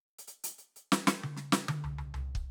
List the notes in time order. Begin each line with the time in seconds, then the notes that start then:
0.18 closed hi-hat
0.27 closed hi-hat
0.44 closed hi-hat
0.58 closed hi-hat
0.76 closed hi-hat
0.92 snare
1.07 snare
1.23 high tom
1.36 snare
1.52 snare
1.68 high tom
1.84 floor tom
1.98 floor tom
2.14 floor tom
2.35 kick